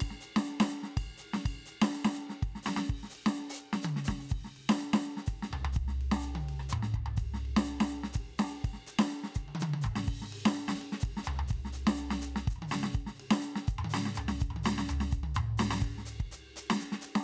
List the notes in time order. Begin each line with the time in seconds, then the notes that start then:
0.01 kick, ride bell
0.08 kick, snare
0.21 hi-hat pedal
0.26 ride
0.37 snare
0.44 hi-hat pedal
0.51 ride
0.61 snare
0.70 hi-hat pedal
0.74 ride
0.84 snare
0.97 kick, ride bell
1.04 kick
1.07 kick
1.18 hi-hat pedal
1.22 ride
1.34 snare
1.46 kick, ride bell
1.52 kick
1.55 kick
1.66 hi-hat pedal
1.73 ride
1.82 snare
1.95 ride bell
2.05 snare
2.14 hi-hat pedal
2.19 ride
2.30 snare
2.43 kick, ride bell
2.49 kick
2.52 kick, snare
2.63 snare, hi-hat pedal
2.77 snare
2.90 kick, crash
2.96 kick
3.04 snare
3.10 hi-hat pedal
3.16 ride bell
3.27 snare
3.39 ride bell
3.50 open hi-hat
3.58 hi-hat pedal
3.73 snare
3.83 hi-hat pedal, high tom
3.97 snare
4.05 snare, hi-hat pedal
4.09 kick
4.20 open hi-hat
4.29 kick, hi-hat pedal, crash
4.38 kick
4.41 kick, snare
4.57 ride
4.70 snare
4.78 hi-hat pedal, ride
4.94 snare
4.99 hi-hat pedal
5.06 ride
5.17 snare
5.27 kick, hi-hat pedal, ride
5.34 kick
5.43 snare, hi-hat pedal
5.51 kick, floor tom
5.65 floor tom
5.73 kick, hi-hat pedal
5.78 ride
5.83 kick
5.87 kick, snare
5.94 hi-hat pedal
6.02 ride
6.12 snare
6.22 hi-hat pedal, ride
6.36 high tom
6.41 hi-hat pedal
6.49 ride
6.60 cross-stick
6.70 hi-hat pedal, mid tom
6.83 snare
6.89 hi-hat pedal
6.95 kick, floor tom
7.06 floor tom
7.17 kick, hi-hat pedal, ride
7.24 kick
7.28 kick
7.34 snare
7.46 ride
7.57 snare
7.65 hi-hat pedal
7.70 ride
7.81 snare
7.93 ride
8.04 snare
8.14 kick, hi-hat pedal, ride
8.22 kick
8.39 snare, hi-hat pedal, ride
8.65 kick, ride bell
8.71 kick, snare
8.87 hi-hat pedal, ride
8.99 snare
9.08 hi-hat pedal, ride
9.24 snare
9.35 kick, hi-hat pedal, high tom
9.49 high tom
9.55 high tom
9.60 hi-hat pedal, high tom
9.74 high tom
9.82 hi-hat pedal, mid tom
9.87 kick
9.92 kick
9.96 snare
10.08 kick, hi-hat pedal, crash
10.18 kick
10.22 snare
10.33 ride
10.46 snare
10.53 hi-hat pedal
10.58 ride
10.69 snare
10.76 kick, hi-hat pedal
10.82 ride
10.93 snare
11.01 kick, hi-hat pedal
11.06 kick, ride
11.13 kick
11.17 snare
11.24 hi-hat pedal
11.28 floor tom
11.39 floor tom
11.48 kick, hi-hat pedal
11.54 kick, ride
11.60 kick
11.65 snare
11.73 hi-hat pedal
11.78 ride
11.87 snare
11.96 hi-hat pedal
12.01 ride
12.11 snare
12.22 hi-hat pedal, ride bell
12.36 snare
12.48 kick, hi-hat pedal
12.54 kick, mid tom, ride
12.59 kick, high tom
12.69 kick, snare, hi-hat pedal
12.84 snare
12.94 kick, hi-hat pedal, ride bell
13.02 kick
13.05 kick, snare
13.15 hi-hat pedal
13.20 ride
13.31 snare
13.42 hi-hat pedal, ride bell
13.56 snare
13.68 kick, hi-hat pedal
13.76 kick, mid tom
13.80 kick
13.85 high tom
13.90 hi-hat pedal
13.94 snare
14.06 snare
14.15 hi-hat pedal, floor tom
14.29 snare
14.40 kick, hi-hat pedal
14.49 kick, mid tom
14.53 kick
14.57 high tom
14.64 snare, hi-hat pedal
14.79 snare
14.88 floor tom, hi-hat pedal
15.01 snare
15.12 kick, hi-hat pedal
15.19 kick
15.22 kick, high tom
15.35 hi-hat pedal, mid tom
15.58 snare, hi-hat pedal
15.71 snare
15.81 kick, hi-hat pedal, ride
15.89 kick
15.99 snare
16.06 hi-hat pedal, ride
16.20 kick
16.32 hi-hat pedal, ride
16.57 hi-hat pedal, ride
16.71 snare
16.80 hi-hat pedal, ride
16.93 snare
17.02 hi-hat pedal, ride
17.16 snare